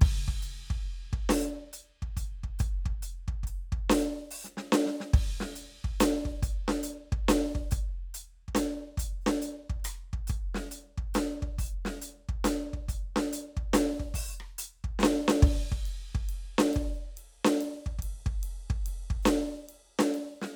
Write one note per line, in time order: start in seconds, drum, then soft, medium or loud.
0.01 kick loud
0.01 crash medium
0.28 kick medium
0.42 closed hi-hat medium
0.70 kick medium
1.13 kick medium
1.29 open hi-hat loud
1.29 snare loud
1.42 hi-hat pedal soft
1.73 closed hi-hat medium
1.87 closed hi-hat soft
2.02 kick medium
2.17 closed hi-hat medium
2.17 kick medium
2.44 kick medium
2.59 closed hi-hat medium
2.59 kick medium
2.86 kick medium
3.03 closed hi-hat medium
3.28 kick medium
3.43 kick medium
3.43 closed hi-hat medium
3.72 kick medium
3.90 open hi-hat loud
3.90 snare loud
4.00 hi-hat pedal soft
4.31 open hi-hat loud
4.44 snare soft
4.44 hi-hat pedal medium
4.57 snare medium
4.72 snare loud
4.86 snare medium
5.00 snare medium
5.14 kick loud
5.14 crash medium
5.40 snare medium
5.56 closed hi-hat medium
5.84 kick medium
6.00 open hi-hat loud
6.00 snare loud
6.25 kick medium
6.43 closed hi-hat medium
6.43 kick medium
6.68 snare medium
6.83 closed hi-hat loud
7.12 kick medium
7.29 closed hi-hat loud
7.29 snare loud
7.55 kick medium
7.71 closed hi-hat medium
7.71 kick medium
8.14 closed hi-hat loud
8.48 kick soft
8.55 closed hi-hat loud
8.55 snare loud
8.98 closed hi-hat loud
8.98 kick medium
9.21 hi-hat pedal soft
9.26 snare loud
9.42 closed hi-hat medium
9.70 kick medium
9.79 kick soft
9.84 closed hi-hat loud
9.84 cross-stick medium
10.13 kick medium
10.27 closed hi-hat medium
10.27 kick medium
10.55 snare medium
10.71 closed hi-hat medium
10.98 kick medium
11.07 kick soft
11.14 closed hi-hat medium
11.14 snare loud
11.42 kick medium
11.50 snare soft
11.59 open hi-hat medium
11.59 kick medium
11.85 snare medium
12.02 closed hi-hat medium
12.29 kick medium
12.44 closed hi-hat loud
12.44 snare loud
12.73 kick medium
12.89 closed hi-hat medium
12.89 kick medium
13.16 snare loud
13.33 closed hi-hat loud
13.57 kick medium
13.74 closed hi-hat loud
13.74 snare loud
14.00 kick medium
14.14 open hi-hat loud
14.14 kick medium
14.40 cross-stick medium
14.58 closed hi-hat loud
14.84 kick medium
14.99 snare loud
14.99 hi-hat pedal soft
15.03 snare loud
15.28 snare loud
15.43 kick loud
15.43 crash medium
15.72 kick medium
15.86 ride soft
16.15 kick medium
16.29 ride medium
16.58 snare loud
16.73 kick medium
16.73 ride medium
16.93 hi-hat pedal soft
17.17 hi-hat pedal soft
17.17 ride medium
17.45 snare loud
17.61 ride medium
17.86 kick medium
17.99 kick medium
17.99 ride medium
18.26 kick medium
18.43 ride medium
18.70 kick medium
18.86 kick soft
18.86 ride medium
19.10 kick medium
19.23 snare loud
19.23 hi-hat pedal soft
19.23 ride medium
19.69 ride medium
19.99 snare loud
20.14 ride soft
20.42 snare medium